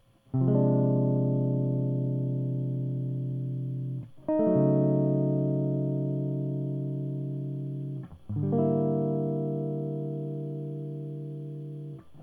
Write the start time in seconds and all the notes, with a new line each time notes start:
0.35 C3
0.41 F3
0.48 G#3
0.55 D4
4.28 D#4
4.39 A3
4.47 F#3
4.56 C#3
8.37 D3
8.43 G3
8.53 A#3
8.58 E4